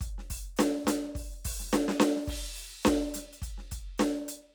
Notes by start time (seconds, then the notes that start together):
0.01 closed hi-hat, kick
0.18 snare
0.30 open hi-hat, kick
0.57 closed hi-hat, snare, hi-hat pedal
0.85 closed hi-hat, kick, snare
1.04 snare
1.15 open hi-hat, kick
1.33 snare
1.45 open hi-hat, kick
1.60 snare
1.65 snare
1.70 snare, hi-hat pedal
1.73 snare
1.88 snare
2.00 snare
2.17 snare
2.25 kick, hi-hat pedal, crash
2.56 open hi-hat
2.83 snare, hi-hat pedal
2.87 kick
3.14 closed hi-hat, snare
3.33 closed hi-hat
3.42 closed hi-hat, kick
3.58 snare
3.72 closed hi-hat, kick
3.98 snare, hi-hat pedal
4.28 closed hi-hat